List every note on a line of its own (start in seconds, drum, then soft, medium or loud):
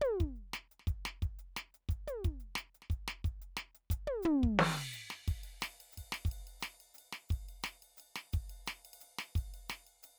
0.01 closed hi-hat soft
0.01 high tom loud
0.20 kick medium
0.20 closed hi-hat soft
0.36 closed hi-hat soft
0.53 snare medium
0.53 closed hi-hat medium
0.71 closed hi-hat soft
0.79 snare soft
0.87 kick medium
0.87 closed hi-hat soft
1.05 snare medium
1.05 closed hi-hat soft
1.22 kick medium
1.22 closed hi-hat soft
1.39 closed hi-hat soft
1.56 closed hi-hat medium
1.56 snare medium
1.74 closed hi-hat soft
1.89 kick medium
1.89 closed hi-hat soft
2.07 closed hi-hat medium
2.07 high tom medium
2.24 kick medium
2.24 closed hi-hat soft
2.40 closed hi-hat soft
2.55 closed hi-hat medium
2.55 snare medium
2.74 closed hi-hat soft
2.82 snare soft
2.90 kick soft
2.90 closed hi-hat soft
3.08 snare medium
3.08 closed hi-hat soft
3.24 kick medium
3.24 closed hi-hat soft
3.41 closed hi-hat soft
3.57 closed hi-hat medium
3.57 snare medium
3.75 closed hi-hat soft
3.90 kick medium
3.90 closed hi-hat loud
4.07 high tom loud
4.22 floor tom loud
4.22 hi-hat pedal medium
4.43 kick medium
4.59 snare loud
4.59 crash medium
4.93 hi-hat pedal medium
4.93 ride soft
5.10 snare medium
5.10 ride soft
5.28 kick medium
5.28 ride soft
5.43 ride soft
5.60 snare medium
5.60 hi-hat pedal medium
5.60 ride medium
5.80 ride soft
5.92 hi-hat pedal medium
5.97 kick soft
5.97 ride soft
6.12 snare medium
6.12 ride soft
6.25 kick medium
6.25 hi-hat pedal medium
6.31 ride soft
6.47 ride soft
6.60 snare medium
6.60 hi-hat pedal medium
6.60 ride soft
6.80 ride soft
6.94 hi-hat pedal medium
6.98 ride soft
7.13 snare medium
7.13 ride soft
7.29 kick medium
7.29 hi-hat pedal medium
7.29 ride soft
7.48 ride soft
7.63 snare medium
7.63 hi-hat pedal medium
7.63 ride soft
7.82 ride soft
7.97 hi-hat pedal medium
7.97 ride soft
8.16 snare medium
8.16 ride soft
8.32 kick medium
8.32 hi-hat pedal medium
8.32 ride soft
8.49 ride soft
8.66 snare medium
8.66 hi-hat pedal medium
8.66 ride soft
8.85 ride soft
8.93 ride soft
9.00 hi-hat pedal medium
9.00 ride soft
9.18 snare medium
9.18 ride soft
9.35 kick medium
9.35 hi-hat pedal medium
9.35 ride soft
9.54 ride soft
9.69 snare medium
9.69 hi-hat pedal medium
9.69 ride soft
9.86 ride soft
10.02 hi-hat pedal medium
10.02 ride soft